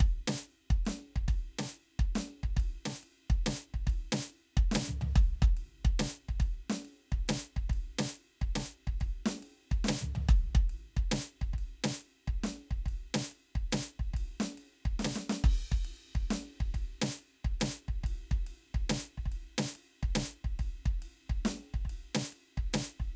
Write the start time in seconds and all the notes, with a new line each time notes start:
0.01 kick, ride
0.28 snare
0.44 ride
0.71 kick
0.86 snare, ride
1.17 kick
1.29 kick, ride
1.59 snare
1.73 ride
2.00 kick
2.16 snare, ride
2.44 kick
2.58 kick, ride
2.86 snare
3.04 ride
3.31 kick
3.47 snare, ride
3.75 kick
3.88 kick, ride
4.13 snare
4.31 ride
4.58 kick
4.72 snare
4.76 snare
4.89 floor tom
5.02 floor tom
5.16 kick, ride
5.43 kick
5.58 ride
5.86 kick
6.00 snare, ride
6.29 kick
6.41 kick, ride
6.71 snare
6.86 ride
7.13 kick
7.29 snare, ride
7.57 kick
7.70 kick, ride
7.99 snare
8.16 ride
8.42 kick
8.50 kick
8.56 snare, ride
8.88 kick
9.01 kick, ride
9.27 snare
9.43 ride
9.72 kick
9.85 snare
9.89 snare
10.02 floor tom
10.16 floor tom
10.29 kick, ride
10.56 kick
10.70 ride
10.98 kick
11.12 snare, ride
11.42 kick
11.54 kick
11.59 ride
11.85 snare
12.02 ride
12.28 kick
12.37 kick
12.44 snare, ride
12.72 kick
12.87 kick, ride
13.15 snare
13.32 ride
13.56 kick
13.73 snare, ride
14.00 kick
14.14 kick, ride
14.41 snare
14.58 ride
14.86 kick
15.00 snare
15.05 snare
15.17 snare
15.30 snare
15.45 kick, crash
15.73 kick
15.86 ride
16.16 kick
16.31 snare, ride
16.61 kick
16.75 kick, ride
17.03 snare
17.20 ride
17.45 kick
17.61 snare, ride
17.89 kick
18.04 kick, ride
18.32 kick
18.48 ride
18.75 kick
18.90 snare, ride
19.18 kick
19.26 kick
19.33 ride
19.59 snare
19.76 ride
20.04 kick
20.16 snare, ride
20.45 kick
20.60 kick, ride
20.86 kick
21.03 ride
21.30 kick
21.46 snare, ride
21.75 kick
21.86 kick
21.90 ride
22.16 snare
22.33 ride
22.58 kick
22.74 snare, ride
23.01 kick